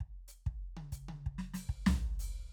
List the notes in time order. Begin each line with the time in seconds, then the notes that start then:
0.01 kick
0.28 hi-hat pedal
0.46 kick
0.77 high tom
0.92 kick, hi-hat pedal
1.09 high tom
1.26 kick
1.38 snare
1.54 snare, hi-hat pedal
1.69 kick
1.86 snare, floor tom
2.19 hi-hat pedal